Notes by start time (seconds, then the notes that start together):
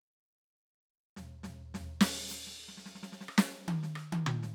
1.16 snare, floor tom
1.43 snare, floor tom
1.74 snare, floor tom
2.01 snare, ride
2.28 snare, hi-hat pedal
2.47 snare
2.68 snare
2.77 snare
2.85 snare
2.95 snare
3.03 snare
3.12 snare
3.20 snare
3.28 cross-stick
3.38 snare
3.68 high tom
3.83 snare
3.95 cross-stick
4.12 high tom
4.26 mid tom
4.43 snare